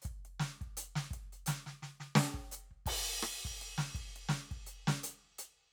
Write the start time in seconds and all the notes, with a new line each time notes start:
0.01 snare, hi-hat pedal
0.06 kick, closed hi-hat
0.26 closed hi-hat
0.40 snare
0.62 kick, closed hi-hat
0.78 closed hi-hat
0.96 snare
1.11 kick, closed hi-hat
1.33 closed hi-hat
1.47 closed hi-hat, snare
1.67 snare
1.83 snare
2.01 snare
2.16 snare
2.35 kick
2.52 hi-hat pedal
2.72 kick
2.87 kick, crash
3.23 cross-stick
3.46 kick, closed hi-hat
3.62 closed hi-hat
3.79 snare
3.95 kick, closed hi-hat
4.17 closed hi-hat
4.29 snare
4.52 kick, closed hi-hat
4.67 closed hi-hat
4.88 snare
5.04 open hi-hat
5.39 open hi-hat